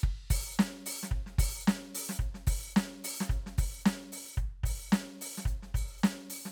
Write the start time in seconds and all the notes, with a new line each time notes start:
0.01 kick, hi-hat pedal
0.31 open hi-hat, kick
0.56 snare, hi-hat pedal
0.87 open hi-hat
1.04 snare, hi-hat pedal
1.12 kick
1.27 snare
1.39 open hi-hat, kick
1.64 hi-hat pedal
1.69 snare
1.96 open hi-hat
2.10 snare
2.17 closed hi-hat, kick, hi-hat pedal
2.35 snare
2.48 open hi-hat, kick
2.73 hi-hat pedal
2.77 snare
3.05 open hi-hat
3.21 snare, hi-hat pedal
3.30 closed hi-hat, kick
3.47 snare
3.59 open hi-hat, kick
3.82 hi-hat pedal
3.87 snare
4.13 open hi-hat
4.35 closed hi-hat, kick, hi-hat pedal
4.64 open hi-hat, kick
4.91 snare, hi-hat pedal
5.22 open hi-hat
5.39 snare
5.43 kick, hi-hat pedal
5.48 closed hi-hat
5.64 snare
5.75 open hi-hat, kick
6.00 hi-hat pedal
6.04 snare
6.31 open hi-hat
6.46 snare